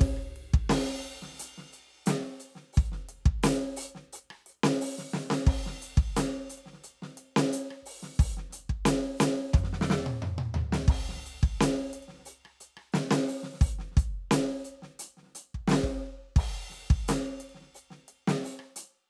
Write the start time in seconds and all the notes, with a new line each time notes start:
0.01 kick, ride
0.16 cross-stick
0.36 ride
0.54 kick
0.70 snare, crash
1.02 closed hi-hat
1.22 snare
1.28 cross-stick
1.32 snare, hi-hat pedal
1.39 closed hi-hat
1.58 snare
1.73 closed hi-hat
2.06 closed hi-hat, snare
2.40 closed hi-hat
2.47 open hi-hat
2.55 snare
2.73 open hi-hat
2.77 kick
2.85 hi-hat pedal
2.92 snare
3.09 closed hi-hat
3.26 kick
3.43 open hi-hat, snare
3.77 open hi-hat
3.84 hi-hat pedal
3.95 snare
4.13 open hi-hat, hi-hat pedal
4.30 cross-stick
4.46 hi-hat pedal, open hi-hat
4.64 snare
4.74 hi-hat pedal
4.81 open hi-hat
4.98 snare
5.14 snare
5.30 snare
5.47 kick, crash
5.66 snare, hi-hat pedal
5.82 closed hi-hat
5.97 kick
6.16 closed hi-hat, snare
6.41 hi-hat pedal
6.50 closed hi-hat
6.58 closed hi-hat
6.66 snare
6.73 snare
6.84 closed hi-hat
7.02 snare
7.17 closed hi-hat
7.36 snare
7.53 closed hi-hat
7.71 cross-stick
7.83 open hi-hat, kick
8.03 snare
8.19 open hi-hat, kick
8.32 hi-hat pedal
8.37 snare
8.50 closed hi-hat, snare
8.69 kick
8.86 closed hi-hat, snare
9.17 closed hi-hat, snare, hi-hat pedal
9.54 kick, hi-hat pedal, mid tom
9.64 snare
9.73 snare
9.81 snare, hi-hat pedal
9.90 snare
10.06 high tom
10.22 mid tom
10.38 high tom
10.54 floor tom
10.73 snare
10.88 kick, crash
11.09 snare
11.16 snare
11.26 closed hi-hat
11.43 kick
11.61 closed hi-hat, snare
11.93 closed hi-hat
12.03 closed hi-hat
12.08 snare
12.13 snare
12.20 snare
12.25 open hi-hat, hi-hat pedal
12.45 cross-stick
12.61 closed hi-hat
12.77 cross-stick
12.92 snare, hi-hat pedal
13.11 snare
13.28 open hi-hat
13.43 snare
13.54 snare
13.61 open hi-hat, kick
13.69 hi-hat pedal
13.79 snare
13.92 snare
13.97 closed hi-hat, kick
14.31 closed hi-hat, snare
14.59 hi-hat pedal
14.65 closed hi-hat
14.82 snare
14.99 closed hi-hat
15.17 snare
15.23 snare
15.27 snare
15.35 closed hi-hat
15.55 kick
15.68 snare
15.72 snare
15.84 kick
16.36 open hi-hat, kick, crash
16.70 open hi-hat, snare
16.90 kick
17.01 hi-hat pedal
17.08 closed hi-hat, snare
17.40 closed hi-hat
17.49 closed hi-hat
17.55 snare
17.61 snare
17.75 open hi-hat, hi-hat pedal
17.91 snare
18.08 closed hi-hat
18.28 snare
18.44 open hi-hat
18.53 hi-hat pedal
18.59 cross-stick
18.76 closed hi-hat